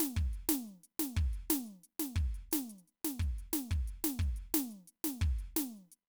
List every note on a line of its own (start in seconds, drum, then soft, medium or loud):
0.01 snare medium
0.01 closed hi-hat soft
0.17 kick medium
0.17 closed hi-hat soft
0.34 closed hi-hat soft
0.50 snare medium
0.50 closed hi-hat soft
0.68 closed hi-hat soft
0.84 closed hi-hat soft
1.00 snare medium
1.00 closed hi-hat soft
1.17 kick medium
1.17 closed hi-hat soft
1.34 closed hi-hat soft
1.51 snare medium
1.51 closed hi-hat soft
1.67 closed hi-hat soft
1.84 closed hi-hat soft
2.00 snare medium
2.00 closed hi-hat soft
2.17 kick medium
2.17 closed hi-hat soft
2.35 closed hi-hat soft
2.52 snare medium
2.52 closed hi-hat medium
2.70 closed hi-hat medium
2.79 closed hi-hat soft
2.88 closed hi-hat soft
3.05 snare medium
3.05 closed hi-hat soft
3.20 kick medium
3.20 closed hi-hat soft
3.39 closed hi-hat soft
3.54 snare medium
3.54 closed hi-hat soft
3.72 kick medium
3.72 closed hi-hat soft
3.88 closed hi-hat soft
4.05 snare medium
4.05 closed hi-hat soft
4.20 kick medium
4.20 closed hi-hat soft
4.37 closed hi-hat soft
4.55 snare medium
4.55 closed hi-hat soft
4.72 closed hi-hat soft
4.88 closed hi-hat soft
5.05 snare medium
5.05 closed hi-hat soft
5.22 kick medium
5.22 closed hi-hat soft
5.39 closed hi-hat soft
5.57 snare medium
5.57 closed hi-hat soft
5.77 closed hi-hat soft
5.92 closed hi-hat soft